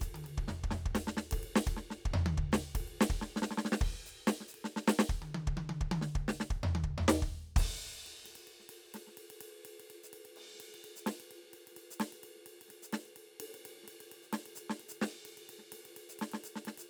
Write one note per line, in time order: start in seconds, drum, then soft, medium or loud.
0.01 kick medium
0.01 hi-hat pedal medium
0.01 ride medium
0.14 high tom medium
0.14 ride soft
0.24 high tom soft
0.24 ride soft
0.38 kick medium
0.48 snare medium
0.48 floor tom medium
0.64 kick medium
0.71 snare medium
0.71 floor tom medium
0.86 kick medium
0.95 snare medium
0.95 ride medium
1.07 snare medium
1.17 snare medium
1.31 kick medium
1.31 ride medium
1.43 ride medium
1.56 snare loud
1.67 kick medium
1.67 ride medium
1.77 snare soft
1.90 snare soft
2.05 kick medium
2.14 floor tom loud
2.26 high tom loud
2.38 kick medium
2.52 snare loud
2.52 ride soft
2.75 kick medium
2.75 ride medium
2.88 ride soft
3.01 snare loud
3.10 kick medium
3.10 ride soft
3.21 snare medium
3.36 snare medium
3.42 snare medium
3.51 snare medium
3.58 snare medium
3.65 snare medium
3.72 snare medium
3.80 kick medium
3.80 crash medium
4.06 hi-hat pedal medium
4.27 snare loud
4.27 ride medium
4.40 snare soft
4.48 hi-hat pedal medium
4.54 ride medium
4.64 snare medium
4.76 snare medium
4.88 snare loud
4.99 snare loud
5.09 kick medium
5.22 high tom medium
5.35 high tom loud
5.47 kick medium
5.57 high tom medium
5.69 high tom medium
5.81 kick medium
5.91 high tom loud
6.01 snare medium
6.15 kick medium
6.28 snare medium
6.40 snare medium
6.50 kick medium
6.63 floor tom loud
6.75 high tom loud
6.84 kick medium
6.98 floor tom loud
7.08 snare loud
7.22 kick medium
7.56 open hi-hat medium
7.56 kick loud
7.56 ride loud
8.06 ride soft
8.24 snare soft
8.24 ride medium
8.27 snare soft
8.35 ride medium
8.47 ride soft
8.60 snare soft
8.69 ride medium
8.94 snare soft
8.94 ride medium
9.07 snare soft
9.17 ride medium
9.30 ride medium
9.41 ride medium
9.65 ride medium
9.80 ride soft
9.90 ride soft
10.03 hi-hat pedal medium
10.13 ride medium
10.25 ride soft
10.36 ride medium
10.54 snare soft
10.60 ride medium
10.69 snare soft
10.73 snare soft
10.73 ride soft
10.96 hi-hat pedal medium
11.06 snare medium
11.06 ride medium
11.20 ride soft
11.31 ride soft
11.43 snare soft
11.47 snare soft
11.53 ride medium
11.67 ride soft
11.71 snare soft
11.73 snare soft
11.73 ride medium
11.91 hi-hat pedal medium
12.00 snare medium
12.00 ride medium
12.12 ride soft
12.23 ride medium
12.36 snare soft
12.46 ride medium
12.61 ride soft
12.68 snare soft
12.68 ride medium
12.82 hi-hat pedal medium
12.93 snare medium
12.93 ride medium
13.00 hi-hat pedal soft
13.05 ride soft
13.16 ride medium
13.40 ride medium
13.54 ride medium
13.65 ride medium
13.83 snare soft
13.88 ride medium
14.00 ride medium
14.12 ride medium
14.23 hi-hat pedal soft
14.33 snare medium
14.33 ride medium
14.46 ride medium
14.55 hi-hat pedal medium
14.55 ride medium
14.70 snare medium
14.80 ride soft
14.89 hi-hat pedal medium
14.89 ride soft
15.02 snare medium
15.02 ride medium
15.10 hi-hat pedal soft
15.25 ride medium
15.37 ride soft
15.49 ride medium
15.58 snare soft
15.72 snare soft
15.72 ride medium
15.85 ride soft
15.96 ride medium
16.09 hi-hat pedal medium
16.19 snare medium
16.19 ride medium
16.32 snare medium
16.32 ride soft
16.44 hi-hat pedal medium
16.44 ride medium
16.56 snare soft
16.65 snare soft
16.65 ride medium
16.78 hi-hat pedal medium
16.78 ride medium